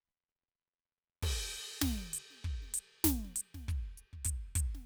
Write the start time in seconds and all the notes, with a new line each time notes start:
1.23 kick, crash
1.51 closed hi-hat
1.82 kick, snare
2.13 closed hi-hat
2.30 snare
2.44 closed hi-hat, kick
2.62 snare
2.74 closed hi-hat
3.04 kick, snare
3.24 snare
3.36 closed hi-hat
3.54 kick, snare
3.68 kick, closed hi-hat
3.97 closed hi-hat
4.13 kick
4.25 closed hi-hat, kick
4.55 closed hi-hat, kick
4.75 snare